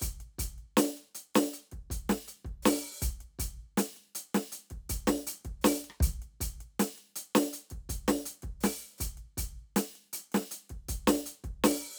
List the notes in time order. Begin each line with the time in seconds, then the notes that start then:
0.01 closed hi-hat, kick, hi-hat pedal
0.20 closed hi-hat
0.39 closed hi-hat, kick
0.58 closed hi-hat
0.77 closed hi-hat, snare
0.97 closed hi-hat
1.15 closed hi-hat
1.35 snare, closed hi-hat
1.53 closed hi-hat
1.72 kick, closed hi-hat
1.90 closed hi-hat, kick
2.09 snare, closed hi-hat
2.28 closed hi-hat
2.45 kick, closed hi-hat
2.63 open hi-hat, snare, hi-hat pedal
3.01 closed hi-hat, kick, hi-hat pedal
3.21 closed hi-hat
3.39 closed hi-hat, kick
3.61 closed hi-hat
3.78 closed hi-hat, snare
3.97 closed hi-hat
4.15 closed hi-hat
4.35 snare, closed hi-hat
4.52 closed hi-hat
4.70 kick, closed hi-hat
4.90 closed hi-hat, kick
5.08 snare
5.27 closed hi-hat
5.45 kick, closed hi-hat
5.62 snare, hi-hat pedal
5.66 open hi-hat
5.83 kick, closed hi-hat
5.90 cross-stick
6.00 closed hi-hat, kick
6.22 closed hi-hat
6.41 closed hi-hat, kick
6.61 closed hi-hat
6.80 closed hi-hat, snare
6.98 closed hi-hat
7.16 closed hi-hat
7.35 snare, closed hi-hat
7.53 closed hi-hat
7.70 kick, closed hi-hat
7.89 closed hi-hat, kick
8.08 snare, closed hi-hat
8.26 closed hi-hat
8.43 kick, closed hi-hat
8.61 open hi-hat, snare, hi-hat pedal
8.98 closed hi-hat, kick, hi-hat pedal
9.17 closed hi-hat
9.38 closed hi-hat, kick
9.59 closed hi-hat
9.76 closed hi-hat, snare
9.95 closed hi-hat
10.13 closed hi-hat
10.32 snare, closed hi-hat
10.41 snare
10.51 closed hi-hat
10.70 kick, closed hi-hat
10.89 closed hi-hat, kick
11.08 snare
11.26 closed hi-hat
11.44 kick, closed hi-hat
11.64 open hi-hat, snare